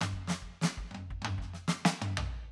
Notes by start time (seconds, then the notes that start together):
0.01 snare, high tom
0.13 kick
0.27 snare
0.30 snare
0.42 kick
0.61 snare
0.63 snare
0.77 kick
0.91 high tom
0.94 high tom
1.10 kick
1.22 high tom
1.24 high tom
1.38 kick, snare
1.53 snare
1.68 snare
1.85 snare
2.01 high tom
2.17 floor tom